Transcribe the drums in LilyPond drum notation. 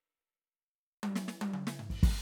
\new DrumStaff \drummode { \time 4/4 \tempo 4 = 118 r4 r4 tommh16 sn16 sn16 tommh16 toml16 sn16 tomfh16 <bd cymc>16 | <bd cymc>4 r4 r4 r4 | }